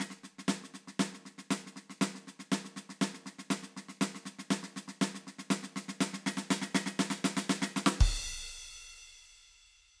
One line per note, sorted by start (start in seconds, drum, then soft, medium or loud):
0.00 snare medium
0.10 snare soft
0.23 snare soft
0.38 snare soft
0.48 snare loud
0.64 snare soft
0.87 snare soft
0.99 snare loud
1.14 snare soft
1.25 snare soft
1.38 snare soft
1.51 snare loud
1.66 snare soft
1.76 snare soft
1.90 snare soft
2.01 snare loud
2.15 snare soft
2.27 snare soft
2.39 snare soft
2.52 snare loud
2.64 snare soft
2.76 snare medium
2.89 snare soft
3.01 snare loud
3.14 snare soft
3.26 snare medium
3.38 snare soft
3.50 snare loud
3.63 snare soft
3.76 snare medium
3.88 snare soft
4.01 snare loud
4.15 snare soft
4.25 snare medium
4.39 snare medium
4.50 snare loud
4.63 snare medium
4.76 snare medium
4.88 snare medium
5.01 snare loud
5.14 snare soft
5.27 snare soft
5.38 snare medium
5.50 snare loud
5.63 snare medium
5.76 snare medium
5.88 snare medium
6.01 snare loud
6.13 snare medium
6.26 snare loud
6.37 snare medium
6.50 snare loud
6.62 snare medium
6.75 snare loud
6.86 snare medium
6.99 snare loud
7.10 snare loud
7.24 snare loud
7.37 snare loud
7.49 snare loud
7.62 snare loud
7.76 snare loud
7.86 snare loud
8.00 kick loud
8.00 crash loud